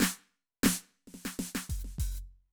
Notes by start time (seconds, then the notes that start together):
0.00 snare
0.63 snare
0.66 snare
1.07 snare
1.14 snare
1.24 snare, hi-hat pedal
1.39 snare
1.55 snare
1.69 open hi-hat, kick
1.78 hi-hat pedal
1.84 snare
1.98 kick, open hi-hat
2.14 hi-hat pedal